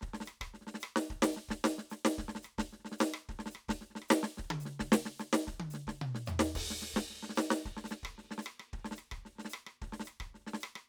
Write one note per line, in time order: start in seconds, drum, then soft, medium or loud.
0.01 kick soft
0.01 snare soft
0.09 kick soft
0.14 snare soft
0.20 snare soft
0.25 cross-stick medium
0.25 hi-hat pedal soft
0.41 kick soft
0.41 cross-stick medium
0.46 kick soft
0.54 snare soft
0.61 snare soft
0.67 snare soft
0.74 snare soft
0.80 cross-stick medium
0.80 hi-hat pedal medium
0.96 snare medium
1.10 kick soft
1.10 snare soft
1.22 snare loud
1.31 hi-hat pedal soft
1.36 snare soft
1.49 kick soft
1.49 snare medium
1.64 snare loud
1.78 snare soft
1.90 snare soft
1.90 hi-hat pedal soft
2.05 snare loud
2.18 kick soft
2.18 snare soft
2.24 kick soft
2.28 snare soft
2.35 snare soft
2.43 cross-stick medium
2.43 hi-hat pedal soft
2.58 kick soft
2.58 snare medium
2.72 snare soft
2.79 snare soft
2.85 snare soft
2.92 snare soft
2.99 snare loud
2.99 hi-hat pedal soft
3.14 cross-stick medium
3.29 kick soft
3.29 snare soft
3.39 snare soft
3.46 snare soft
3.51 cross-stick medium
3.51 hi-hat pedal soft
3.68 kick soft
3.68 snare medium
3.74 kick soft
3.81 snare soft
3.90 snare soft
3.95 snare soft
4.02 cross-stick soft
4.08 snare loud
4.08 hi-hat pedal soft
4.23 snare medium
4.37 kick soft
4.37 snare soft
4.44 kick soft
4.50 high tom loud
4.60 hi-hat pedal medium
4.65 snare soft
4.79 kick soft
4.79 snare medium
4.92 snare loud
5.05 snare soft
5.19 snare medium
5.19 hi-hat pedal soft
5.33 snare loud
5.47 kick soft
5.47 snare soft
5.53 kick soft
5.60 high tom medium
5.70 snare soft
5.70 hi-hat pedal medium
5.87 kick soft
5.87 snare medium
6.01 mid tom loud
6.15 snare soft
6.26 floor tom medium
6.26 hi-hat pedal medium
6.39 snare loud
6.55 kick soft
6.55 ride loud
6.70 snare soft
6.78 snare soft
6.78 hi-hat pedal soft
6.94 kick soft
6.94 snare medium
7.10 snare soft
7.16 snare soft
7.23 snare soft
7.29 snare soft
7.35 snare loud
7.35 hi-hat pedal medium
7.51 snare loud
7.65 kick soft
7.65 snare soft
7.72 kick soft
7.77 snare soft
7.84 snare soft
7.84 hi-hat pedal soft
7.91 snare medium
8.03 kick soft
8.03 cross-stick medium
8.08 kick soft
8.18 snare soft
8.24 snare soft
8.30 snare soft
8.30 snare medium
8.38 snare medium
8.42 cross-stick medium
8.42 hi-hat pedal soft
8.60 cross-stick medium
8.73 kick soft
8.73 snare soft
8.79 kick soft
8.85 snare soft
8.91 snare soft
8.96 cross-stick soft
8.96 hi-hat pedal soft
9.11 kick soft
9.11 cross-stick medium
9.17 kick soft
9.25 snare soft
9.35 snare soft
9.39 snare soft
9.45 snare soft
9.50 cross-stick medium
9.50 hi-hat pedal medium
9.67 cross-stick medium
9.82 kick soft
9.82 snare soft
9.89 kick soft
9.89 snare soft
10.00 snare soft
10.05 cross-stick medium
10.05 hi-hat pedal medium
10.20 kick soft
10.20 cross-stick medium
10.34 snare soft
10.40 snare soft
10.44 snare soft
10.47 snare soft
10.54 snare medium
10.60 cross-stick medium
10.60 hi-hat pedal soft
10.76 cross-stick medium